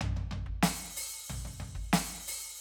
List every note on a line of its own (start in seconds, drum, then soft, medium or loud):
0.01 floor tom loud
0.01 high tom loud
0.16 floor tom medium
0.16 high tom medium
0.31 floor tom medium
0.31 high tom loud
0.46 kick medium
0.63 open hi-hat loud
0.63 snare loud
0.97 open hi-hat loud
1.30 floor tom loud
1.30 high tom medium
1.45 floor tom medium
1.45 high tom medium
1.60 floor tom medium
1.60 high tom medium
1.75 kick medium
1.93 open hi-hat loud
1.93 snare loud
2.28 open hi-hat loud